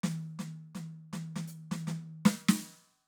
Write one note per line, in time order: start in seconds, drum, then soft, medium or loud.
0.03 snare medium
0.03 high tom medium
0.39 snare soft
0.39 high tom soft
0.75 snare soft
0.75 high tom medium
1.13 snare soft
1.13 high tom medium
1.36 snare soft
1.36 high tom medium
1.48 hi-hat pedal soft
1.72 snare medium
1.72 high tom medium
1.88 snare soft
1.88 high tom medium
2.26 snare loud
2.49 snare loud